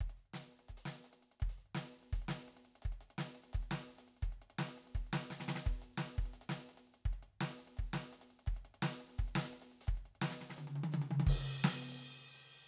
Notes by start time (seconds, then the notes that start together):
0.01 kick, closed hi-hat
0.09 closed hi-hat
0.17 closed hi-hat
0.25 closed hi-hat
0.33 snare
0.43 closed hi-hat
0.52 closed hi-hat
0.59 closed hi-hat
0.69 kick, closed hi-hat
0.77 closed hi-hat
0.85 snare
0.95 closed hi-hat
1.04 closed hi-hat
1.13 closed hi-hat
1.22 closed hi-hat
1.31 closed hi-hat
1.40 kick, closed hi-hat
1.49 closed hi-hat
1.57 closed hi-hat
1.66 closed hi-hat
1.75 snare
1.84 closed hi-hat
1.93 closed hi-hat
2.03 closed hi-hat
2.13 closed hi-hat, kick
2.22 closed hi-hat
2.28 snare
2.40 closed hi-hat
2.48 closed hi-hat
2.57 closed hi-hat
2.65 closed hi-hat
2.75 closed hi-hat
2.82 kick, closed hi-hat
2.92 closed hi-hat
3.01 closed hi-hat
3.10 closed hi-hat
3.18 snare
3.27 closed hi-hat
3.35 closed hi-hat
3.44 closed hi-hat
3.53 kick, closed hi-hat
3.63 closed hi-hat
3.71 snare
3.81 closed hi-hat
3.91 closed hi-hat
3.98 closed hi-hat
4.08 closed hi-hat
4.17 closed hi-hat
4.22 kick, closed hi-hat
4.32 closed hi-hat
4.42 closed hi-hat
4.50 closed hi-hat
4.59 snare
4.68 closed hi-hat
4.78 closed hi-hat
4.87 closed hi-hat
4.95 kick, closed hi-hat
5.07 closed hi-hat
5.13 snare
5.23 closed hi-hat
5.30 snare
5.40 snare
5.48 snare
5.55 snare
5.66 kick, closed hi-hat
5.82 closed hi-hat
5.97 snare
6.15 kick, closed hi-hat
6.25 closed hi-hat
6.34 closed hi-hat
6.41 closed hi-hat
6.49 snare
6.59 closed hi-hat
6.69 closed hi-hat
6.77 closed hi-hat
6.87 closed hi-hat
6.94 closed hi-hat
7.05 kick
7.13 closed hi-hat
7.23 closed hi-hat
7.41 snare
7.51 closed hi-hat
7.59 closed hi-hat
7.67 closed hi-hat
7.77 kick, closed hi-hat
7.93 snare
8.04 closed hi-hat
8.13 closed hi-hat
8.21 closed hi-hat
8.30 closed hi-hat
8.39 closed hi-hat
8.46 kick, closed hi-hat
8.56 closed hi-hat
8.65 closed hi-hat
8.74 closed hi-hat
8.82 snare
8.92 closed hi-hat
9.00 closed hi-hat
9.09 closed hi-hat
9.18 kick, closed hi-hat
9.28 closed hi-hat
9.35 snare
9.45 closed hi-hat
9.53 closed hi-hat
9.62 closed hi-hat
9.71 closed hi-hat
9.81 closed hi-hat
9.87 kick, closed hi-hat
9.97 closed hi-hat
10.05 closed hi-hat
10.15 closed hi-hat
10.21 snare
10.30 snare
10.41 snare
10.50 snare
10.56 hi-hat pedal, high tom
10.67 high tom
10.76 high tom
10.83 high tom
10.92 hi-hat pedal, high tom
11.02 high tom
11.11 high tom
11.20 high tom
11.27 kick, crash
11.64 snare
11.73 closed hi-hat
11.82 closed hi-hat
11.92 closed hi-hat
11.99 closed hi-hat